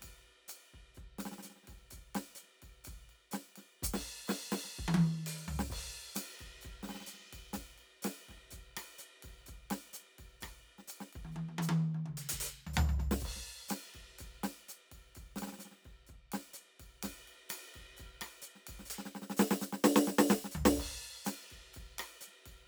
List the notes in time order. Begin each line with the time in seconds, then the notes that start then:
0.01 kick, snare, hi-hat pedal, ride
0.09 kick
0.48 cross-stick, hi-hat pedal, ride
0.74 kick, ride
0.95 kick, hi-hat pedal
1.19 snare, ride
1.26 snare
1.32 snare
1.39 snare
1.43 snare, hi-hat pedal, ride
1.50 snare
1.56 snare
1.63 snare
1.68 kick, snare, ride
1.73 kick, snare
1.82 snare
1.91 kick, hi-hat pedal, ride
1.98 kick
2.15 snare, ride
2.35 hi-hat pedal, ride
2.43 snare
2.62 kick, ride
2.84 kick, hi-hat pedal, ride
2.93 kick
3.10 ride
3.31 snare, hi-hat pedal, ride
3.56 snare, ride
3.83 kick, hi-hat pedal
3.94 snare, crash
4.28 snare, crash
4.52 snare, crash
4.65 snare
4.79 kick
4.86 kick, high tom
4.94 high tom
5.26 closed hi-hat
5.48 kick, floor tom
5.59 snare
5.70 kick, crash
5.77 kick
6.15 snare, hi-hat pedal, ride
6.39 kick, ride
6.46 kick, snare
6.61 kick, hi-hat pedal, ride
6.70 kick
6.83 snare, ride
6.89 snare
6.95 snare
7.01 snare
7.07 snare, hi-hat pedal
7.11 snare, ride
7.20 snare
7.26 snare
7.30 kick, snare, ride
7.38 kick
7.54 kick, snare, hi-hat pedal, ride
7.61 kick
7.78 ride
8.03 snare, hi-hat pedal, ride
8.29 kick, snare, ride
8.37 snare
8.41 snare
8.44 snare
8.51 kick, hi-hat pedal, ride
8.58 kick
8.77 cross-stick, ride
8.99 hi-hat pedal
9.23 kick, ride
9.29 kick
9.46 kick, hi-hat pedal, ride
9.54 kick
9.71 snare, ride
9.93 hi-hat pedal, ride
10.02 snare
10.19 kick, ride
10.24 kick
10.41 kick, cross-stick, hi-hat pedal, ride
10.79 snare
10.88 hi-hat pedal, ride
11.01 snare
11.13 kick, ride
11.25 high tom
11.32 hi-hat pedal
11.36 high tom
11.49 high tom
11.59 hi-hat pedal, high tom
11.69 high tom
11.95 high tom
12.06 kick, mid tom
12.18 closed hi-hat
12.29 kick, closed hi-hat
12.38 kick, closed hi-hat
12.47 hi-hat pedal
12.67 floor tom
12.73 kick, hi-hat pedal
12.77 floor tom
12.89 floor tom
13.00 kick, floor tom
13.05 kick
13.11 snare
13.20 kick, hi-hat pedal
13.25 crash
13.29 kick
13.36 snare
13.69 snare, hi-hat pedal, ride
13.94 kick, ride
14.01 snare
14.08 snare
14.19 kick, hi-hat pedal, ride
14.26 kick
14.44 snare, ride
14.69 hi-hat pedal, ride
14.92 kick, ride
14.97 kick
15.15 kick, hi-hat pedal, ride
15.22 kick
15.36 snare, ride
15.42 snare
15.47 snare
15.53 snare
15.59 snare, hi-hat pedal
15.65 snare
15.72 snare
15.77 snare
15.82 kick, snare, ride
15.86 snare
15.91 snare
16.07 kick, hi-hat pedal, ride
16.14 kick
16.32 snare, ride
16.54 hi-hat pedal
16.60 snare
16.80 kick, ride
17.02 kick, snare, hi-hat pedal, ride
17.09 kick
17.28 ride
17.50 cross-stick, hi-hat pedal, ride
17.74 kick, ride
17.81 kick
17.97 kick, hi-hat pedal, ride
18.05 kick
18.21 cross-stick, ride
18.42 hi-hat pedal
18.56 snare
18.67 kick, ride
18.74 kick
18.79 snare
18.86 hi-hat pedal
18.90 closed hi-hat
18.99 snare
19.05 snare, hi-hat pedal
19.15 snare
19.22 snare
19.30 snare
19.37 snare, hi-hat pedal
19.51 snare
19.62 snare, hi-hat pedal
19.73 snare
19.84 snare, hi-hat pedal
19.96 snare
20.05 snare, hi-hat pedal
20.19 snare
20.28 kick, snare, hi-hat pedal
20.45 snare
20.51 kick, floor tom, hi-hat pedal
20.61 kick
20.66 snare
20.77 kick, hi-hat pedal, crash
20.83 kick
20.91 snare
21.25 snare, hi-hat pedal, ride
21.51 kick, ride
21.57 snare
21.61 snare
21.74 kick, hi-hat pedal, ride
21.99 cross-stick, ride
22.21 hi-hat pedal, ride
22.27 snare
22.46 kick, ride